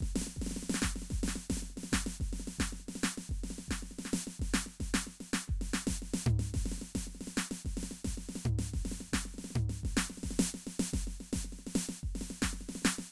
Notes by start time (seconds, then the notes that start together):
0.01 kick, snare
0.07 kick
0.16 snare
0.22 snare, hi-hat pedal
0.27 snare
0.37 kick, snare
0.42 snare
0.47 snare
0.51 snare
0.57 snare
0.63 snare
0.70 snare
0.75 snare
0.81 kick, snare, hi-hat pedal
0.90 kick
0.96 snare
1.02 snare
1.11 kick, snare
1.19 kick
1.24 snare
1.28 snare
1.36 snare, hi-hat pedal
1.50 kick, snare
1.57 snare
1.63 snare
1.70 snare
1.76 snare
1.84 snare
1.89 kick, snare, hi-hat pedal
1.99 kick
2.07 snare
2.21 kick, snare
2.27 kick
2.33 snare
2.40 snare
2.46 snare, hi-hat pedal
2.59 kick, snare
2.65 kick
2.73 snare
2.80 snare
2.87 snare
2.89 snare
2.96 snare
3.01 snare, hi-hat pedal
3.18 snare
3.30 kick, snare
3.36 kick
3.44 snare
3.51 snare, hi-hat pedal
3.59 snare
3.69 kick, snare
3.83 snare
3.91 snare
3.99 snare
4.06 snare
4.10 snare, hi-hat pedal
4.27 snare
4.40 kick, snare
4.46 kick
4.54 snare
4.62 hi-hat pedal
4.67 snare
4.80 kick, snare
4.94 snare
5.07 snare
5.20 snare, hi-hat pedal
5.34 snare
5.48 kick, snare
5.56 kick
5.62 snare
5.74 snare, hi-hat pedal
5.87 kick, snare
6.02 snare
6.14 snare
6.27 floor tom, hi-hat pedal
6.40 snare
6.54 kick, snare
6.62 kick
6.66 snare
6.72 snare
6.77 snare, hi-hat pedal
6.82 snare
6.95 kick, snare
7.07 snare
7.15 snare
7.21 snare
7.28 snare
7.35 snare, hi-hat pedal
7.51 snare
7.65 kick, snare
7.71 kick
7.77 snare
7.83 snare
7.88 snare, hi-hat pedal
8.05 kick, snare
8.12 kick
8.18 snare
8.29 snare
8.36 snare
8.45 hi-hat pedal, floor tom
8.59 snare
8.74 kick, snare
8.80 kick
8.85 snare
8.92 snare
8.96 hi-hat pedal
9.01 snare
9.13 kick, snare
9.26 snare
9.34 snare
9.39 snare
9.45 snare
9.51 snare, hi-hat pedal
9.56 floor tom
9.70 snare
9.84 kick, snare
9.92 kick
9.97 snare
10.06 snare, hi-hat pedal
10.18 snare
10.24 kick, snare
10.31 snare
10.40 snare
10.54 snare
10.64 snare, hi-hat pedal
10.80 snare
10.94 kick, snare
11.00 kick
11.07 snare
11.18 snare, hi-hat pedal
11.33 kick, snare
11.45 snare
11.53 snare
11.59 snare
11.67 snare
11.74 snare, hi-hat pedal
11.89 snare
12.04 kick, snare
12.10 kick
12.16 snare
12.21 snare
12.27 snare, hi-hat pedal
12.42 kick, snare
12.53 snare
12.61 snare
12.69 snare
12.76 snare
12.82 snare
12.85 snare, hi-hat pedal
12.99 snare